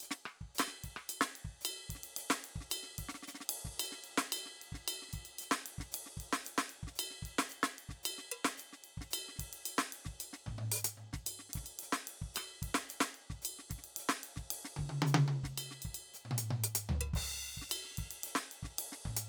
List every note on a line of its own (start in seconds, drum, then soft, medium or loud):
0.01 hi-hat pedal medium
0.01 ride bell medium
0.11 snare medium
0.26 cross-stick medium
0.42 kick soft
0.55 hi-hat pedal medium
0.55 ride bell loud
0.60 snare loud
0.68 snare soft
0.84 kick soft
0.84 ride medium
0.97 cross-stick medium
1.09 hi-hat pedal medium
1.09 ride bell medium
1.22 snare loud
1.36 ride soft
1.45 kick soft
1.61 hi-hat pedal medium
1.66 ride bell loud
1.90 kick soft
1.90 ride medium
1.96 snare soft
2.04 ride medium
2.17 hi-hat pedal medium
2.17 ride medium
2.31 snare loud
2.45 ride medium
2.56 kick soft
2.61 snare soft
2.71 hi-hat pedal medium
2.71 ride bell loud
2.84 snare soft
2.99 kick soft
2.99 ride medium
3.09 snare medium
3.15 snare soft
3.23 snare soft
3.28 snare soft
3.28 hi-hat pedal medium
3.34 snare soft
3.34 snare medium
3.41 snare soft
3.50 ride loud
3.65 kick soft
3.65 snare soft
3.80 hi-hat pedal medium
3.80 ride bell loud
3.93 snare soft
4.04 ride soft
4.18 snare loud
4.33 hi-hat pedal medium
4.33 ride bell loud
4.46 snare soft
4.62 ride soft
4.73 kick soft
4.73 snare soft
4.88 hi-hat pedal medium
4.88 ride bell loud
5.03 snare soft
5.09 snare soft
5.13 kick soft
5.13 snare soft
5.13 ride bell soft
5.17 snare soft
5.26 ride bell soft
5.39 hi-hat pedal medium
5.39 ride bell medium
5.52 snare loud
5.67 ride medium
5.79 kick soft
5.79 snare soft
5.92 hi-hat pedal medium
5.92 ride loud
6.07 snare soft
6.18 kick soft
6.18 ride medium
6.33 snare medium
6.45 hi-hat pedal medium
6.45 ride medium
6.58 snare loud
6.70 ride soft
6.83 kick soft
6.88 snare soft
6.96 hi-hat pedal medium
6.96 ride bell loud
7.11 snare soft
7.23 kick soft
7.23 ride soft
7.39 snare loud
7.50 hi-hat pedal medium
7.50 ride soft
7.64 snare loud
7.79 ride soft
7.90 kick soft
7.90 snare soft
8.04 hi-hat pedal medium
8.04 ride bell loud
8.19 snare soft
8.32 percussion loud
8.45 snare loud
8.58 hi-hat pedal medium
8.58 ride medium
8.73 snare soft
8.84 ride soft
8.98 kick soft
8.98 snare soft
9.03 kick soft
9.11 hi-hat pedal medium
9.11 ride bell loud
9.29 snare soft
9.36 kick soft
9.36 snare soft
9.36 ride medium
9.41 snare soft
9.53 ride medium
9.66 hi-hat pedal medium
9.66 ride bell medium
9.79 snare loud
9.93 ride medium
10.05 kick soft
10.05 snare soft
10.20 hi-hat pedal medium
10.20 ride bell medium
10.34 snare soft
10.47 kick soft
10.47 mid tom medium
10.59 mid tom medium
10.72 closed hi-hat loud
10.78 hi-hat pedal medium
10.85 closed hi-hat loud
10.98 mid tom soft
11.14 kick soft
11.14 snare medium
11.27 hi-hat pedal medium
11.27 ride bell loud
11.40 snare soft
11.54 kick soft
11.54 snare soft
11.54 ride medium
11.61 kick soft
11.61 snare soft
11.67 ride bell medium
11.80 hi-hat pedal medium
11.80 ride medium
11.93 snare medium
12.08 ride medium
12.22 kick soft
12.35 cross-stick medium
12.35 hi-hat pedal medium
12.35 ride bell loud
12.63 kick soft
12.63 ride medium
12.68 kick soft
12.75 snare loud
12.90 hi-hat pedal medium
12.90 ride medium
13.01 snare loud
13.15 ride soft
13.30 kick soft
13.30 snare soft
13.35 kick soft
13.43 hi-hat pedal medium
13.43 ride bell loud
13.59 snare soft
13.70 kick soft
13.70 snare soft
13.70 ride medium
13.79 snare soft
13.85 ride medium
13.97 hi-hat pedal medium
13.97 ride medium
14.09 snare loud
14.24 ride medium
14.37 kick soft
14.37 snare soft
14.51 hi-hat pedal medium
14.51 ride loud
14.65 snare medium
14.77 kick soft
14.77 high tom medium
14.90 high tom medium
15.03 high tom loud
15.07 hi-hat pedal medium
15.15 high tom loud
15.28 high tom medium
15.44 kick soft
15.44 snare medium
15.58 hi-hat pedal medium
15.58 ride bell loud
15.72 snare soft
15.83 kick soft
15.83 ride bell medium
15.95 ride bell medium
16.14 hi-hat pedal medium
16.26 mid tom medium
16.32 mid tom medium
16.39 closed hi-hat loud
16.51 mid tom medium
16.64 closed hi-hat loud
16.64 hi-hat pedal medium
16.76 closed hi-hat loud
16.89 floor tom loud
17.01 percussion loud
17.14 kick medium
17.14 hi-hat pedal medium
17.14 crash loud
17.24 cross-stick soft
17.58 kick soft
17.62 snare soft
17.70 hi-hat pedal medium
17.70 ride bell loud
17.85 snare soft
17.92 snare soft
17.98 kick soft
17.98 ride medium
18.04 snare soft
18.11 ride medium
18.24 hi-hat pedal medium
18.24 ride medium
18.36 snare medium
18.52 ride medium
18.63 kick soft
18.63 snare soft
18.78 hi-hat pedal medium
18.78 ride loud
18.93 snare soft
19.06 kick soft
19.06 mid tom medium
19.17 closed hi-hat loud